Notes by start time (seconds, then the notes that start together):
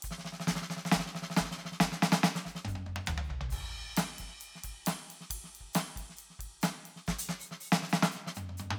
0.03 kick, hi-hat pedal, ride
0.11 kick, snare
0.18 snare
0.25 snare
0.33 snare
0.40 snare
0.47 kick, snare, hi-hat pedal
0.56 snare
0.62 snare
0.70 snare
0.77 snare
0.85 snare
0.92 snare, hi-hat pedal
0.96 kick, snare
1.06 snare
1.15 snare
1.22 snare
1.30 snare
1.37 kick, snare, hi-hat pedal
1.44 snare
1.51 snare
1.58 snare
1.65 snare
1.72 snare
1.80 kick, snare, hi-hat pedal
1.92 snare
2.02 snare
2.12 snare
2.23 snare, hi-hat pedal
2.35 snare
2.47 kick, hi-hat pedal
2.55 snare
2.65 kick, hi-hat pedal, high tom
2.74 kick, high tom
2.86 kick, high tom
2.96 high tom
3.06 kick, hi-hat pedal, mid tom
3.15 kick, mid tom
3.24 hi-hat pedal
3.29 kick, floor tom
3.41 floor tom
3.50 kick, hi-hat pedal, floor tom, ride
3.85 kick
3.97 snare, hi-hat pedal, ride
4.19 kick, ride
4.26 kick, snare
4.40 hi-hat pedal, ride
4.55 snare
4.64 kick, ride
4.70 kick
4.85 snare, hi-hat pedal, ride
5.10 ride
5.21 snare
5.30 kick, hi-hat pedal, ride
5.37 kick
5.44 snare
5.55 ride
5.61 kick
5.66 kick
5.73 snare, hi-hat pedal, ride
5.96 kick, ride
6.03 kick
6.09 snare
6.17 hi-hat pedal, ride
6.30 snare
6.39 kick, ride
6.46 kick
6.61 snare, hi-hat pedal, ride
6.86 ride
6.96 snare
7.07 kick, snare, hi-hat pedal
7.15 closed hi-hat, kick
7.29 snare
7.40 open hi-hat
7.44 hi-hat pedal
7.51 snare
7.60 open hi-hat
7.66 closed hi-hat, hi-hat pedal
7.72 snare
7.82 snare
7.89 snare, hi-hat pedal
8.03 snare
8.11 snare, hi-hat pedal
8.27 snare
8.35 hi-hat pedal, high tom
8.49 high tom
8.57 hi-hat pedal, high tom
8.71 high tom